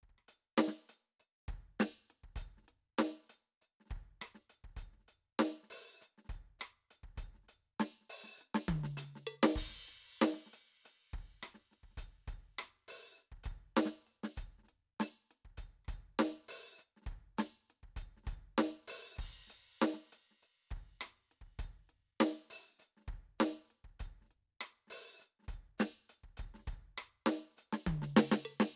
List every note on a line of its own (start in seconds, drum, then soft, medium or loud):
0.04 kick soft
0.09 kick soft
0.18 cross-stick soft
0.28 closed hi-hat soft
0.57 open hi-hat medium
0.57 snare loud
0.57 hi-hat pedal soft
0.68 snare soft
0.89 closed hi-hat medium
1.20 open hi-hat soft
1.20 hi-hat pedal soft
1.48 kick soft
1.48 snare soft
1.48 closed hi-hat soft
1.79 open hi-hat medium
1.79 snare medium
1.79 hi-hat pedal medium
2.10 closed hi-hat soft
2.23 kick soft
2.36 closed hi-hat medium
2.36 kick soft
2.57 snare soft
2.62 snare soft
2.68 closed hi-hat soft
2.98 closed hi-hat medium
2.98 snare medium
3.29 closed hi-hat medium
3.61 open hi-hat soft
3.61 hi-hat pedal soft
3.80 snare soft
3.85 snare soft
3.90 kick soft
3.90 closed hi-hat soft
3.99 kick soft
4.21 open hi-hat medium
4.21 cross-stick medium
4.21 hi-hat pedal soft
4.34 snare soft
4.49 closed hi-hat soft
4.64 kick soft
4.76 closed hi-hat medium
4.76 kick soft
4.92 snare soft
4.99 snare soft
5.08 closed hi-hat soft
5.39 closed hi-hat medium
5.39 snare loud
5.63 snare soft
5.70 open hi-hat medium
6.01 closed hi-hat soft
6.01 hi-hat pedal medium
6.18 snare soft
6.25 snare soft
6.29 closed hi-hat soft
6.29 kick soft
6.59 closed hi-hat medium
6.59 cross-stick medium
6.59 hi-hat pedal soft
6.90 closed hi-hat soft
7.03 kick soft
7.15 closed hi-hat medium
7.15 kick soft
7.15 snare soft
7.34 snare soft
7.43 snare soft
7.48 closed hi-hat soft
7.79 closed hi-hat medium
7.79 snare medium
8.01 snare soft
8.09 open hi-hat loud
8.23 snare soft
8.28 snare soft
8.38 closed hi-hat soft
8.38 hi-hat pedal soft
8.54 snare medium
8.68 kick soft
8.68 high tom loud
8.75 kick soft
8.78 kick soft
8.83 snare soft
8.97 closed hi-hat loud
9.15 snare soft
9.27 percussion loud
9.43 snare loud
9.55 kick soft
9.55 crash medium
9.64 kick soft
9.69 snare soft
9.88 closed hi-hat soft
10.21 open hi-hat loud
10.21 snare loud
10.21 hi-hat pedal soft
10.33 snare soft
10.46 snare soft
10.53 closed hi-hat medium
10.84 closed hi-hat medium
10.84 hi-hat pedal soft
11.13 kick soft
11.13 closed hi-hat soft
11.42 closed hi-hat medium
11.42 cross-stick medium
11.42 hi-hat pedal soft
11.54 snare soft
11.71 snare soft
11.71 closed hi-hat soft
11.83 kick soft
11.91 snare soft
11.97 closed hi-hat medium
11.97 kick soft
12.27 closed hi-hat medium
12.27 kick soft
12.58 closed hi-hat loud
12.58 cross-stick medium
12.88 open hi-hat loud
13.17 hi-hat pedal soft
13.17 open hi-hat soft
13.31 kick soft
13.44 closed hi-hat medium
13.44 kick soft
13.76 closed hi-hat medium
13.76 snare loud
13.85 snare soft
14.06 open hi-hat soft
14.23 snare medium
14.36 closed hi-hat medium
14.36 kick soft
14.36 hi-hat pedal soft
14.58 snare soft
14.63 snare soft
14.68 closed hi-hat soft
14.99 open hi-hat loud
14.99 snare medium
14.99 hi-hat pedal soft
15.31 closed hi-hat soft
15.45 kick soft
15.57 closed hi-hat medium
15.57 kick soft
15.85 closed hi-hat medium
15.85 kick soft
15.85 cross-stick soft
16.19 closed hi-hat medium
16.19 snare loud
16.48 open hi-hat loud
16.78 hi-hat pedal medium
16.96 snare soft
17.02 snare soft
17.06 kick soft
17.06 closed hi-hat soft
17.12 kick soft
17.37 closed hi-hat medium
17.37 snare medium
17.37 hi-hat pedal soft
17.70 closed hi-hat soft
17.83 kick soft
17.96 closed hi-hat medium
17.96 kick soft
18.16 snare soft
18.23 kick soft
18.23 snare soft
18.28 closed hi-hat soft
18.33 kick soft
18.58 snare loud
18.58 closed hi-hat medium
18.88 open hi-hat loud
19.16 kick soft
19.16 hi-hat pedal medium
19.16 crash medium
19.24 kick soft
19.47 closed hi-hat medium
19.47 snare soft
19.81 open hi-hat medium
19.81 snare loud
19.81 hi-hat pedal medium
19.93 snare soft
20.12 closed hi-hat medium
20.31 snare soft
20.42 open hi-hat soft
20.42 hi-hat pedal soft
20.71 kick soft
20.71 closed hi-hat soft
20.77 kick soft
21.00 closed hi-hat medium
21.00 cross-stick medium
21.00 hi-hat pedal soft
21.31 closed hi-hat soft
21.41 kick soft
21.59 closed hi-hat medium
21.59 kick soft
21.89 closed hi-hat soft
22.20 closed hi-hat medium
22.20 snare loud
22.50 open hi-hat loud
22.79 closed hi-hat soft
22.79 hi-hat pedal medium
22.97 snare soft
23.00 snare soft
23.05 kick soft
23.05 snare soft
23.09 closed hi-hat soft
23.13 kick soft
23.39 closed hi-hat medium
23.39 snare loud
23.39 hi-hat pedal soft
23.70 closed hi-hat soft
23.84 kick soft
23.99 closed hi-hat medium
23.99 kick soft
24.07 kick soft
24.21 snare soft
24.24 snare soft
24.31 closed hi-hat soft
24.61 closed hi-hat medium
24.61 cross-stick medium
24.87 open hi-hat loud
24.87 snare soft
25.19 closed hi-hat soft
25.19 hi-hat pedal soft
25.39 snare soft
25.42 snare soft
25.47 closed hi-hat soft
25.47 kick soft
25.47 snare soft
25.54 kick soft
25.78 closed hi-hat medium
25.78 snare medium
25.78 hi-hat pedal soft
26.09 closed hi-hat soft
26.23 kick soft
26.37 closed hi-hat medium
26.37 kick soft
26.41 snare soft
26.47 kick soft
26.54 snare soft
26.58 snare soft
26.66 closed hi-hat medium
26.66 kick soft
26.66 snare soft
26.73 kick soft
26.97 closed hi-hat medium
26.97 cross-stick medium
27.26 open hi-hat loud
27.26 snare medium
27.57 closed hi-hat medium
27.57 hi-hat pedal soft
27.73 snare medium
27.86 kick soft
27.86 high tom loud
27.94 kick soft
28.02 snare soft
28.16 snare loud
28.31 snare loud
28.45 percussion medium
28.60 snare loud